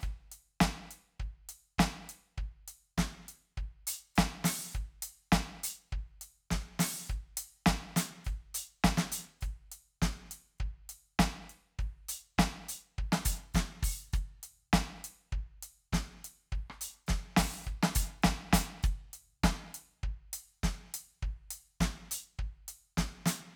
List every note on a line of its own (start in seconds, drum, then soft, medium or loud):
0.01 kick medium
0.01 hi-hat pedal soft
0.32 closed hi-hat medium
0.61 kick medium
0.61 snare loud
0.91 closed hi-hat medium
1.20 kick medium
1.20 closed hi-hat soft
1.49 closed hi-hat medium
1.79 kick medium
1.79 snare loud
2.10 closed hi-hat medium
2.38 kick medium
2.38 closed hi-hat soft
2.68 closed hi-hat medium
2.98 kick medium
2.98 snare loud
3.29 closed hi-hat medium
3.58 kick medium
3.58 closed hi-hat soft
3.87 open hi-hat loud
4.16 kick medium
4.16 snare loud
4.16 hi-hat pedal medium
4.45 open hi-hat loud
4.45 snare loud
4.73 kick medium
4.73 hi-hat pedal medium
5.03 closed hi-hat loud
5.32 kick medium
5.32 snare loud
5.64 closed hi-hat loud
5.93 kick medium
5.93 closed hi-hat soft
6.22 closed hi-hat medium
6.51 kick medium
6.51 snare loud
6.80 open hi-hat loud
6.80 snare loud
7.08 kick medium
7.08 hi-hat pedal soft
7.38 closed hi-hat loud
7.67 kick medium
7.67 snare loud
7.97 closed hi-hat loud
7.97 snare loud
8.25 kick medium
8.25 closed hi-hat soft
8.25 hi-hat pedal soft
8.55 closed hi-hat loud
8.84 kick medium
8.84 snare loud
8.98 snare loud
9.10 closed hi-hat loud
9.10 kick soft
9.41 kick medium
9.41 closed hi-hat soft
9.41 hi-hat pedal medium
9.46 crash soft
9.72 closed hi-hat medium
10.02 kick medium
10.02 snare loud
10.32 closed hi-hat medium
10.59 kick medium
10.59 closed hi-hat soft
10.90 closed hi-hat medium
11.19 kick medium
11.19 snare loud
11.50 closed hi-hat soft
11.79 kick medium
11.79 snare soft
11.79 closed hi-hat soft
11.79 crash soft
11.79 ride soft
12.09 closed hi-hat loud
12.39 kick medium
12.39 snare loud
12.69 closed hi-hat loud
12.99 kick medium
12.99 crash soft
13.13 snare loud
13.26 open hi-hat loud
13.26 kick medium
13.54 kick medium
13.54 snare loud
13.54 hi-hat pedal medium
13.83 open hi-hat loud
13.83 kick medium
14.13 kick medium
14.13 hi-hat pedal medium
14.44 closed hi-hat medium
14.74 kick medium
14.74 snare loud
15.05 closed hi-hat medium
15.33 kick medium
15.63 closed hi-hat medium
15.93 kick medium
15.93 snare loud
15.93 closed hi-hat soft
16.25 closed hi-hat medium
16.53 kick medium
16.53 crash soft
16.70 cross-stick medium
16.81 closed hi-hat loud
16.86 kick soft
17.07 kick medium
17.07 snare loud
17.07 hi-hat pedal soft
17.37 open hi-hat loud
17.37 kick medium
17.37 snare loud
17.65 kick medium
17.65 hi-hat pedal soft
17.83 snare loud
17.96 closed hi-hat loud
17.96 kick medium
18.23 kick medium
18.23 snare loud
18.23 hi-hat pedal soft
18.53 open hi-hat loud
18.53 kick medium
18.53 snare loud
18.83 kick loud
18.83 hi-hat pedal medium
19.14 closed hi-hat medium
19.44 kick medium
19.44 snare loud
19.75 closed hi-hat medium
20.04 kick medium
20.34 closed hi-hat loud
20.64 kick medium
20.64 snare loud
20.94 closed hi-hat loud
21.23 kick medium
21.23 ride soft
21.51 closed hi-hat medium
21.81 kick medium
21.81 snare loud
22.12 closed hi-hat loud
22.39 kick medium
22.39 closed hi-hat soft
22.69 closed hi-hat medium
22.98 kick medium
22.98 snare loud
23.26 closed hi-hat loud
23.26 snare loud